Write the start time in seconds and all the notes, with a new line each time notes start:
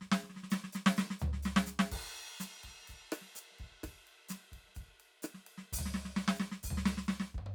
0.01 snare
0.12 snare
0.24 snare
0.29 snare
0.34 snare
0.36 snare
0.43 snare
0.50 snare, hi-hat pedal
0.64 snare
0.72 snare, hi-hat pedal
0.86 snare
0.96 snare, hi-hat pedal
1.10 snare
1.19 floor tom, hi-hat pedal
1.33 snare
1.42 snare, hi-hat pedal
1.56 snare
1.66 snare, hi-hat pedal
1.79 snare
1.92 kick, hi-hat pedal, crash
1.98 kick
2.40 snare, hi-hat pedal, ride
2.63 kick, snare, ride
2.69 kick
2.73 snare
2.81 snare
2.84 snare, hi-hat pedal, ride
2.89 kick
2.94 kick
3.12 cross-stick, ride
3.21 snare
3.35 hi-hat pedal, ride
3.51 snare
3.59 kick, ride
3.65 kick
3.83 kick, cross-stick, ride
3.89 kick
4.07 ride
4.29 snare, hi-hat pedal, ride
4.52 kick, ride
4.57 kick
4.68 snare
4.73 kick, snare, hi-hat pedal, ride
4.82 kick
5.00 ride
5.22 cross-stick, hi-hat pedal, ride
5.34 snare
5.47 ride
5.58 snare
5.73 kick, hi-hat pedal
5.79 kick, floor tom
5.86 snare
5.94 kick, snare
6.05 snare
6.16 snare
6.28 snare
6.35 hi-hat pedal
6.40 snare
6.52 snare
6.63 kick, hi-hat pedal
6.70 floor tom
6.77 snare
6.84 kick, snare
6.97 snare
7.03 hi-hat pedal
7.08 snare
7.20 snare
7.34 kick, mid tom
7.41 kick
7.46 mid tom